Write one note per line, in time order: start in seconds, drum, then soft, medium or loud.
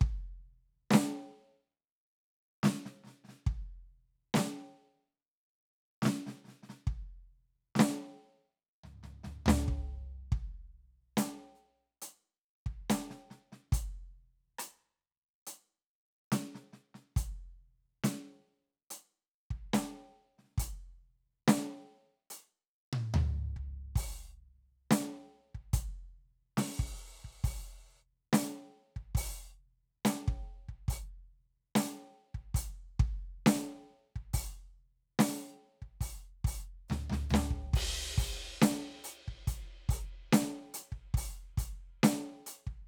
0.01 kick medium
0.91 snare loud
0.94 snare loud
2.63 snare loud
2.65 snare loud
2.85 snare soft
3.04 snare soft
3.06 snare soft
3.24 snare soft
3.28 snare soft
3.47 kick medium
4.34 snare loud
4.37 snare loud
6.02 snare medium
6.05 snare loud
6.26 snare soft
6.28 snare soft
6.44 snare soft
6.47 snare soft
6.63 snare soft
6.69 snare soft
6.87 kick medium
7.75 snare medium
7.79 snare loud
8.84 snare soft
8.84 floor tom soft
9.03 snare soft
9.03 floor tom soft
9.24 snare soft
9.24 floor tom soft
9.46 snare loud
9.46 floor tom loud
9.68 kick medium
10.32 kick medium
11.17 closed hi-hat loud
11.17 snare medium
11.55 hi-hat pedal soft
12.02 closed hi-hat loud
12.66 kick soft
12.90 closed hi-hat loud
12.90 snare loud
13.10 snare soft
13.30 snare soft
13.52 snare soft
13.72 closed hi-hat loud
13.72 kick medium
13.92 kick soft
14.59 closed hi-hat loud
14.59 cross-stick medium
15.47 closed hi-hat loud
16.32 closed hi-hat loud
16.32 snare loud
16.40 closed hi-hat soft
16.55 snare soft
16.73 snare soft
16.94 snare soft
17.16 closed hi-hat loud
17.16 kick medium
18.04 closed hi-hat loud
18.04 snare loud
18.91 closed hi-hat loud
19.51 kick soft
19.73 closed hi-hat loud
19.73 snare loud
20.38 snare soft
20.43 snare soft
20.47 snare soft
20.51 snare soft
20.58 closed hi-hat loud
20.58 kick medium
21.48 closed hi-hat loud
21.48 snare loud
22.30 open hi-hat loud
22.93 high tom loud
23.14 floor tom loud
23.56 kick soft
23.96 open hi-hat loud
23.96 kick medium
24.91 open hi-hat loud
24.91 snare loud
25.55 kick soft
25.73 open hi-hat loud
25.73 kick medium
26.57 open hi-hat loud
26.57 snare loud
26.79 kick medium
27.24 kick soft
27.44 open hi-hat medium
27.44 kick medium
28.33 open hi-hat loud
28.33 snare loud
28.39 cross-stick soft
28.96 kick soft
29.15 open hi-hat loud
29.15 kick medium
30.05 open hi-hat loud
30.05 snare loud
30.28 kick medium
30.69 kick soft
30.88 open hi-hat loud
30.88 kick medium
31.75 open hi-hat loud
31.75 snare loud
32.34 kick soft
32.54 open hi-hat loud
32.54 kick medium
32.99 kick medium
33.46 open hi-hat loud
33.46 snare loud
34.16 kick soft
34.33 open hi-hat loud
34.33 kick medium
35.19 open hi-hat loud
35.19 snare loud
35.82 kick soft
36.01 open hi-hat loud
36.01 kick medium
36.44 open hi-hat loud
36.44 kick medium
36.44 ride soft
36.88 snare medium
36.88 floor tom medium
36.88 hi-hat pedal soft
37.10 snare medium
37.10 floor tom medium
37.30 floor tom loud
37.30 hi-hat pedal soft
37.34 snare loud
37.51 kick soft
37.73 kick medium
37.73 crash loud
37.73 ride loud
38.18 open hi-hat loud
38.18 kick medium
38.62 open hi-hat loud
38.62 snare loud
39.04 open hi-hat loud
39.28 kick soft
39.47 open hi-hat loud
39.47 kick medium
39.89 open hi-hat loud
39.89 kick medium
40.33 open hi-hat loud
40.33 snare loud
40.41 snare soft
40.74 open hi-hat loud
40.92 kick soft
41.14 open hi-hat loud
41.14 kick medium
41.57 open hi-hat loud
41.57 kick medium
42.03 open hi-hat loud
42.03 snare loud
42.46 open hi-hat loud
42.67 kick soft